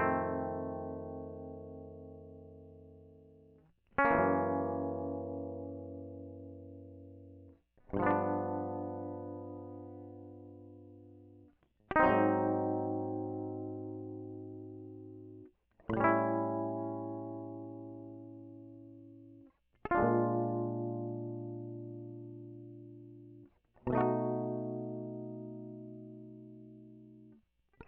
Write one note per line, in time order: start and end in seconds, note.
0.00 3.46 F2
0.00 0.98 A2
0.00 3.74 D#3
0.00 3.64 A3
0.00 3.45 C4
3.99 7.56 C#4
4.06 7.57 A#3
4.12 7.60 E3
4.17 7.54 F#2
4.17 4.23 A#2
7.96 11.49 G2
7.96 8.38 B2
8.01 11.49 F3
8.01 11.53 B3
8.07 11.52 D4
8.12 8.18 F#4
11.92 11.98 G4
11.97 15.51 C4
11.97 15.51 D#4
12.04 15.52 F#3
12.11 15.47 G#2
15.92 19.44 A2
15.98 18.59 G3
15.98 19.52 C#4
16.05 19.50 E4
19.86 19.94 G#4
19.92 23.51 D4
19.92 23.51 F4
19.99 20.08 D3
19.99 23.52 G#3
20.05 23.48 A#2
23.89 27.37 B2
23.93 23.99 D#3
23.93 27.43 A3
23.93 27.38 D#4
23.98 27.37 F#4
23.98 24.07 A4